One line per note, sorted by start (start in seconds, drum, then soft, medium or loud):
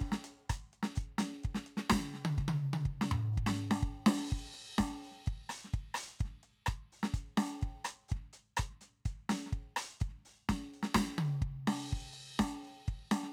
0.01 kick soft
0.01 closed hi-hat soft
0.12 snare medium
0.25 open hi-hat medium
0.50 closed hi-hat loud
0.50 kick soft
0.50 cross-stick medium
0.73 closed hi-hat soft
0.83 snare medium
0.96 open hi-hat medium
0.96 kick soft
1.19 closed hi-hat medium
1.19 snare medium
1.33 snare soft
1.44 kick soft
1.44 closed hi-hat soft
1.55 snare medium
1.67 open hi-hat soft
1.77 snare soft
1.90 kick soft
1.90 snare loud
1.99 high tom medium
2.14 snare soft
2.25 high tom loud
2.38 kick soft
2.38 snare soft
2.48 high tom loud
2.74 high tom medium
2.86 kick soft
3.02 snare medium
3.12 mid tom loud
3.33 hi-hat pedal soft
3.38 kick soft
3.47 snare loud
3.71 snare medium
3.82 kick soft
3.82 hi-hat pedal soft
4.07 snare loud
4.07 crash loud
4.16 snare soft
4.31 closed hi-hat soft
4.31 kick soft
4.54 open hi-hat soft
4.79 closed hi-hat loud
4.79 kick soft
4.79 snare loud
4.90 snare soft
5.04 open hi-hat soft
5.12 snare soft
5.16 snare soft
5.20 snare soft
5.27 kick soft
5.27 open hi-hat soft
5.50 open hi-hat medium
5.50 cross-stick medium
5.65 snare soft
5.73 open hi-hat soft
5.73 kick soft
5.95 open hi-hat loud
5.95 cross-stick medium
6.19 open hi-hat soft
6.19 kick soft
6.25 snare soft
6.29 snare soft
6.33 snare soft
6.43 open hi-hat soft
6.67 open hi-hat medium
6.67 kick soft
6.67 cross-stick medium
6.92 open hi-hat soft
7.03 snare medium
7.14 closed hi-hat medium
7.14 kick soft
7.38 open hi-hat medium
7.38 snare loud
7.62 kick soft
7.62 closed hi-hat soft
7.85 open hi-hat loud
7.85 cross-stick medium
8.09 open hi-hat soft
8.09 kick soft
8.15 snare soft
8.20 snare soft
8.23 snare soft
8.33 closed hi-hat medium
8.57 open hi-hat loud
8.57 kick soft
8.57 cross-stick medium
8.71 snare soft
8.81 closed hi-hat soft
8.81 snare soft
8.86 snare soft
9.06 closed hi-hat soft
9.06 kick soft
9.30 open hi-hat medium
9.30 snare medium
9.47 snare soft
9.53 kick soft
9.53 closed hi-hat soft
9.77 open hi-hat loud
9.77 cross-stick medium
10.01 closed hi-hat soft
10.01 kick soft
10.09 snare soft
10.14 snare soft
10.18 snare soft
10.21 open hi-hat soft
10.21 snare soft
10.49 closed hi-hat medium
10.49 kick soft
10.49 snare medium
10.74 open hi-hat soft
10.83 snare medium
10.95 kick soft
10.95 snare loud
11.18 high tom loud
11.42 kick soft
11.68 snare medium
11.68 crash medium
11.93 kick soft
12.14 open hi-hat soft
12.39 open hi-hat loud
12.39 kick soft
12.39 snare loud
12.53 snare soft
12.65 snare soft
12.65 open hi-hat soft
12.70 snare soft
12.74 snare soft
12.88 kick soft
12.88 closed hi-hat soft
13.12 open hi-hat loud
13.12 snare medium
13.23 snare soft